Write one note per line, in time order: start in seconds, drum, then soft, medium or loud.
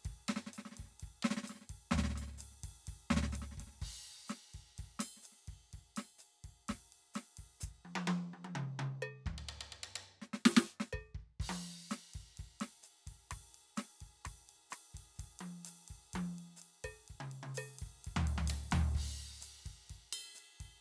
0.01 snare soft
0.01 hi-hat pedal soft
0.05 kick soft
0.05 ride medium
0.11 kick soft
0.29 snare medium
0.29 floor tom loud
0.37 snare medium
0.47 snare soft
0.53 hi-hat pedal medium
0.53 ride medium
0.58 snare soft
0.66 snare soft
0.72 snare soft
0.77 kick soft
0.77 snare soft
0.77 ride medium
0.81 snare soft
0.85 kick soft
0.85 snare soft
0.91 snare soft
0.94 snare soft
0.99 kick soft
0.99 snare soft
0.99 hi-hat pedal soft
0.99 ride medium
1.23 snare medium
1.23 floor tom loud
1.31 snare medium
1.37 snare medium
1.44 snare soft
1.44 hi-hat pedal medium
1.48 snare soft
1.48 ride bell soft
1.55 snare soft
1.61 snare soft
1.70 kick soft
1.70 ride medium
1.75 kick soft
1.91 kick soft
1.91 snare medium
1.91 floor tom loud
1.91 hi-hat pedal soft
1.98 snare medium
2.04 snare medium
2.10 snare soft
2.16 snare soft
2.16 ride bell soft
2.22 snare soft
2.28 snare soft
2.33 snare soft
2.37 snare soft
2.37 hi-hat pedal medium
2.37 ride medium
2.42 snare soft
2.51 snare soft
2.64 kick soft
2.64 ride medium
2.69 kick soft
2.85 kick soft
2.85 hi-hat pedal soft
2.85 ride medium
2.93 kick soft
3.11 snare medium
3.11 floor tom loud
3.17 snare medium
3.23 snare medium
3.32 snare soft
3.32 hi-hat pedal medium
3.32 ride medium
3.42 snare soft
3.52 snare soft
3.58 kick soft
3.58 snare soft
3.58 ride medium
3.63 kick soft
3.63 snare soft
3.73 snare soft
3.77 snare soft
3.77 hi-hat pedal soft
3.81 kick soft
3.81 snare soft
3.81 crash medium
3.88 kick soft
4.28 snare soft
4.28 hi-hat pedal medium
4.28 ride medium
4.54 kick soft
4.54 ride soft
4.60 kick soft
4.76 kick soft
4.76 hi-hat pedal soft
4.76 ride medium
4.84 kick soft
5.00 snare medium
5.00 ride bell medium
5.17 snare soft
5.23 hi-hat pedal medium
5.23 ride medium
5.32 snare soft
5.48 kick soft
5.48 ride soft
5.53 kick soft
5.70 kick soft
5.70 hi-hat pedal soft
5.70 ride soft
5.79 kick soft
5.97 snare medium
5.97 ride bell medium
6.19 hi-hat pedal medium
6.19 ride soft
6.44 kick soft
6.44 ride soft
6.49 kick soft
6.68 kick soft
6.68 snare medium
6.68 hi-hat pedal soft
6.68 ride medium
6.75 kick soft
6.93 ride soft
7.14 snare medium
7.14 hi-hat pedal medium
7.14 ride medium
7.38 kick soft
7.38 ride medium
7.61 kick soft
7.61 hi-hat pedal loud
7.85 high tom soft
7.96 high tom medium
8.08 high tom loud
8.34 high tom soft
8.45 high tom medium
8.56 mid tom loud
8.80 mid tom loud
9.03 percussion loud
9.26 kick soft
9.26 floor tom medium
9.32 kick soft
9.38 floor tom medium
9.49 floor tom loud
9.61 floor tom loud
9.73 floor tom medium
9.84 floor tom loud
9.96 floor tom loud
10.22 snare soft
10.34 snare medium
10.46 snare loud
10.57 snare loud
10.80 snare medium
10.93 kick soft
10.93 percussion loud
11.15 kick soft
11.20 kick soft
11.40 kick soft
11.40 crash medium
11.47 kick soft
11.47 high tom medium
11.91 snare medium
11.91 hi-hat pedal medium
11.91 ride medium
12.14 kick soft
12.14 ride soft
12.21 kick soft
12.38 kick soft
12.38 ride soft
12.61 snare medium
12.61 ride medium
12.83 hi-hat pedal medium
12.83 ride soft
13.07 kick soft
13.07 ride medium
13.12 kick soft
13.30 kick soft
13.30 cross-stick medium
13.30 hi-hat pedal soft
13.30 ride medium
13.37 kick soft
13.55 ride soft
13.77 snare medium
13.77 hi-hat pedal medium
13.77 ride medium
14.01 kick soft
14.01 ride soft
14.25 kick soft
14.25 cross-stick medium
14.25 hi-hat pedal soft
14.25 ride medium
14.50 ride soft
14.71 cross-stick medium
14.71 hi-hat pedal medium
14.71 ride medium
14.95 kick soft
14.95 ride medium
15.00 kick soft
15.16 kick soft
15.16 hi-hat pedal soft
15.16 ride medium
15.24 kick soft
15.40 high tom medium
15.40 ride medium
15.65 hi-hat pedal medium
15.65 ride medium
15.88 kick soft
15.88 ride medium
16.14 kick soft
16.14 high tom medium
16.14 ride medium
16.19 kick soft
16.39 ride soft
16.57 hi-hat pedal medium
16.62 ride medium
16.85 kick soft
16.85 ride medium
16.85 percussion medium
16.90 kick soft
17.04 hi-hat pedal soft
17.08 kick soft
17.08 ride soft
17.15 kick soft
17.21 mid tom medium
17.32 ride soft
17.43 mid tom medium
17.55 hi-hat pedal medium
17.55 ride medium
17.55 percussion loud
17.79 kick soft
17.79 ride medium
17.87 kick soft
18.00 hi-hat pedal soft
18.05 kick soft
18.05 ride medium
18.12 kick soft
18.17 floor tom loud
18.28 ride medium
18.38 floor tom medium
18.48 hi-hat pedal medium
18.48 ride loud
18.48 floor tom loud
18.72 kick soft
18.72 floor tom loud
18.72 ride medium
18.91 kick soft
18.91 hi-hat pedal soft
18.97 crash medium
19.41 hi-hat pedal medium
19.41 ride medium
19.66 kick soft
19.66 ride soft
19.71 kick soft
19.86 hi-hat pedal soft
19.86 ride soft
19.91 kick soft
19.96 kick soft
20.13 ride bell loud
20.35 hi-hat pedal medium
20.35 ride soft
20.61 kick soft
20.61 ride medium
20.66 kick soft